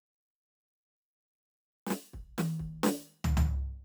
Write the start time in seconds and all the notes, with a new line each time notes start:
1.86 snare
1.90 snare
2.13 kick
2.38 snare, high tom
2.59 kick
2.83 snare
2.86 snare
3.24 floor tom
3.37 floor tom